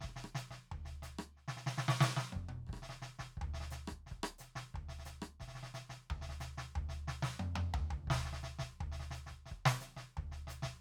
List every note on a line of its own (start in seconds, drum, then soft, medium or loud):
0.01 kick soft
0.01 snare soft
0.09 cross-stick soft
0.15 snare soft
0.15 snare medium
0.24 cross-stick medium
0.35 snare medium
0.35 hi-hat pedal medium
0.50 kick soft
0.50 snare soft
0.72 kick soft
0.72 floor tom medium
0.85 snare soft
1.03 snare soft
1.03 hi-hat pedal medium
1.19 cross-stick medium
1.37 snare soft
1.48 snare medium
1.57 snare soft
1.67 snare medium
1.78 snare medium
1.88 snare loud
2.01 snare loud
2.17 snare medium
2.33 kick soft
2.33 mid tom medium
2.49 high tom medium
2.67 kick soft
2.67 cross-stick soft
2.73 kick soft
2.73 cross-stick soft
2.77 cross-stick soft
2.82 snare soft
2.89 snare medium
3.02 snare medium
3.19 kick soft
3.19 snare medium
3.37 kick soft
3.42 floor tom medium
3.54 snare soft
3.61 snare soft
3.71 snare soft
3.71 hi-hat pedal medium
3.88 cross-stick medium
3.92 kick soft
4.07 snare soft
4.12 kick soft
4.23 cross-stick medium
4.39 snare soft
4.39 hi-hat pedal medium
4.56 kick soft
4.56 snare medium
4.74 kick soft
4.74 floor tom medium
4.89 snare soft
4.99 snare soft
5.05 snare soft
5.05 hi-hat pedal medium
5.22 kick soft
5.22 cross-stick medium
5.40 kick soft
5.40 snare soft
5.48 snare soft
5.54 snare soft
5.55 snare soft
5.63 snare soft
5.74 snare medium
5.74 hi-hat pedal soft
5.90 kick soft
5.90 snare soft
6.10 kick soft
6.10 floor tom medium
6.22 snare soft
6.29 snare soft
6.41 snare medium
6.41 hi-hat pedal medium
6.58 snare medium
6.76 kick soft
6.76 floor tom medium
6.89 snare soft
7.08 snare medium
7.23 snare medium
7.40 mid tom loud
7.56 mid tom loud
7.74 floor tom loud
7.91 floor tom medium
8.08 kick soft
8.08 snare loud
8.16 snare medium
8.22 snare soft
8.25 snare medium
8.33 snare medium
8.41 snare medium
8.41 hi-hat pedal soft
8.59 kick soft
8.59 snare medium
8.81 kick soft
8.81 floor tom medium
8.92 snare soft
9.00 snare soft
9.11 snare medium
9.11 hi-hat pedal soft
9.27 snare soft
9.31 kick soft
9.46 snare soft
9.52 kick soft
9.66 snare loud
9.81 snare soft
9.81 hi-hat pedal medium
9.97 kick soft
9.97 snare soft
10.17 kick soft
10.17 floor tom medium
10.32 snare soft
10.47 snare soft
10.47 hi-hat pedal medium
10.63 kick soft
10.63 snare medium